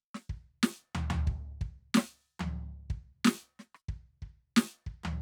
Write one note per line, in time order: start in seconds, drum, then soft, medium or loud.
0.15 snare medium
0.30 kick soft
0.63 snare loud
0.95 floor tom loud
1.10 floor tom loud
1.27 kick medium
1.61 kick medium
1.94 snare loud
1.97 snare loud
2.40 floor tom loud
2.40 high tom medium
2.90 kick medium
3.25 snare loud
3.27 snare loud
3.59 snare soft
3.75 cross-stick soft
3.89 kick medium
4.22 kick soft
4.57 snare loud
4.87 kick soft
5.04 floor tom loud
5.04 high tom medium